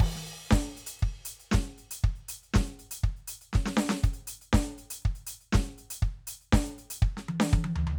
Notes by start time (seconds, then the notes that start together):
0.01 kick, crash
0.16 snare
0.27 closed hi-hat
0.52 kick, snare
0.78 closed hi-hat
0.87 closed hi-hat
1.00 kick, closed hi-hat
1.26 closed hi-hat
1.41 closed hi-hat
1.52 kick, snare
1.66 closed hi-hat
1.79 closed hi-hat
1.92 closed hi-hat
2.04 kick, closed hi-hat
2.16 closed hi-hat
2.29 closed hi-hat
2.44 closed hi-hat
2.55 kick, snare
2.67 closed hi-hat
2.80 closed hi-hat
2.92 closed hi-hat
3.04 kick, closed hi-hat
3.17 closed hi-hat
3.26 closed hi-hat, kick
3.42 closed hi-hat
3.54 kick, snare
3.67 snare
3.78 snare
3.90 snare
4.04 closed hi-hat, kick
4.14 closed hi-hat
4.28 closed hi-hat
4.42 closed hi-hat
4.54 kick, snare
4.76 closed hi-hat, kick
4.91 closed hi-hat
5.03 kick, closed hi-hat
5.16 closed hi-hat
5.28 closed hi-hat
5.41 closed hi-hat
5.53 kick, snare
5.66 closed hi-hat
5.76 closed hi-hat, kick
5.91 closed hi-hat
6.03 kick, closed hi-hat
6.15 closed hi-hat
6.28 closed hi-hat
6.42 closed hi-hat
6.53 kick, snare
6.66 closed hi-hat
6.79 closed hi-hat
6.91 closed hi-hat
7.03 kick, closed hi-hat
7.18 snare
7.29 high tom
7.41 snare
7.54 kick, high tom
7.65 high tom
7.77 floor tom
7.88 floor tom